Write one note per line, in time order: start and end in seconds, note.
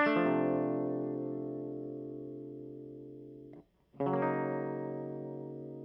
0.00 3.65 D4
0.07 3.56 A3
0.17 3.62 F3
0.27 3.58 C3
4.02 5.85 C#3
4.08 5.85 F#3
4.14 5.85 A#3
4.23 5.85 D#4